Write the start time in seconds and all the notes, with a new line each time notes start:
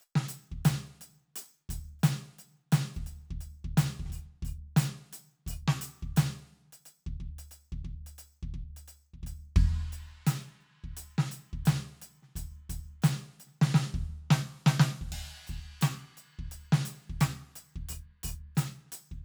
0.00 percussion
0.16 snare
0.29 percussion
0.52 kick
0.65 snare, percussion
1.01 percussion
1.36 percussion
1.69 kick, percussion
1.99 percussion
2.03 snare, percussion
2.39 percussion
2.72 snare, percussion
2.95 kick, percussion
3.06 percussion
3.31 kick
3.41 percussion
3.64 kick
3.77 snare, percussion
4.00 kick
4.05 snare
4.10 kick, percussion
4.17 snare
4.42 kick, percussion
4.76 snare, percussion
4.80 percussion
5.13 percussion
5.47 kick, percussion
5.51 percussion
5.68 snare
5.81 percussion
6.02 kick
6.17 snare, percussion
6.73 percussion
6.85 percussion
7.06 kick
7.20 kick
7.39 percussion
7.51 percussion
7.72 kick
7.85 kick
8.06 percussion
8.18 percussion
8.43 kick
8.54 kick
8.76 percussion
8.88 percussion
9.14 kick
9.23 kick, percussion
9.56 kick, crash
9.92 percussion
10.27 snare, percussion
10.61 percussion
10.84 kick
10.97 percussion
11.18 snare
11.31 percussion
11.53 kick
11.66 snare, percussion
12.02 percussion
12.23 snare
12.29 snare
12.32 snare
12.35 kick, snare, percussion
12.70 kick, percussion
13.02 snare, percussion
13.04 percussion
13.40 percussion
13.47 snare
13.61 snare
13.74 snare
13.94 kick
14.30 snare
14.66 snare
14.80 snare
15.01 kick
15.12 kick, crash
15.47 kick, percussion
15.81 snare, percussion
16.17 percussion
16.39 kick
16.48 kick, percussion
16.72 snare
16.85 percussion
17.10 kick
17.21 snare, percussion
17.56 percussion
17.76 kick
17.89 kick, percussion
18.23 kick, percussion
18.55 snare, percussion
18.57 percussion
18.86 snare
18.92 percussion
19.11 kick